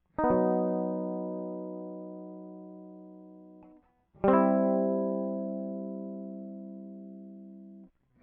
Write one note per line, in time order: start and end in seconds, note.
0.18 3.91 D#4
0.24 3.77 B3
0.31 3.75 F#3
4.24 7.89 G3
4.24 7.92 C4
4.33 7.87 E4